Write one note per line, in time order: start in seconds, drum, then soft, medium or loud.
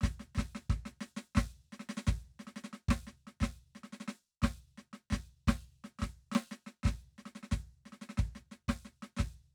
0.01 kick medium
0.01 snare soft
0.04 snare medium
0.20 snare soft
0.35 kick medium
0.35 snare soft
0.39 snare medium
0.55 snare soft
0.70 kick medium
0.70 snare soft
0.86 snare soft
1.01 snare medium
1.17 snare medium
1.35 kick medium
1.35 snare medium
1.37 snare medium
1.72 snare soft
1.80 snare soft
1.89 snare medium
1.97 snare medium
2.07 kick medium
2.07 snare medium
2.39 snare soft
2.47 snare soft
2.56 snare soft
2.64 snare soft
2.73 snare soft
2.88 kick medium
2.88 snare soft
2.91 snare medium
3.07 snare soft
3.27 snare soft
3.40 kick medium
3.40 snare soft
3.43 snare medium
3.75 snare soft
3.83 snare soft
3.93 snare soft
4.00 snare soft
4.08 snare medium
4.42 kick medium
4.42 snare soft
4.44 snare medium
4.78 snare soft
4.93 snare soft
5.10 kick medium
5.10 snare soft
5.13 snare medium
5.48 kick medium
5.48 snare soft
5.48 snare loud
5.84 snare soft
5.99 snare soft
6.02 kick soft
6.02 snare medium
6.32 snare medium
6.35 snare loud
6.51 snare soft
6.66 snare soft
6.83 kick medium
6.83 snare soft
6.86 snare medium
7.18 snare soft
7.26 snare soft
7.35 snare soft
7.43 snare soft
7.51 kick medium
7.51 snare medium
7.86 snare soft
7.92 snare soft
8.01 snare soft
8.09 snare soft
8.17 kick medium
8.17 snare medium
8.35 snare soft
8.51 snare soft
8.68 kick soft
8.68 snare soft
8.68 snare medium
8.85 snare soft
9.02 snare soft
9.17 snare soft
9.19 kick medium
9.19 snare medium